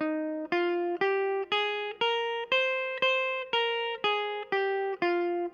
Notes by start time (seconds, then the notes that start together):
0.01 D#4
0.53 F4
1.02 G4
1.52 G#4
2.02 A#4
2.52 C5
3.03 C5
3.54 A#4
4.05 G#4
4.53 G4
5.03 F4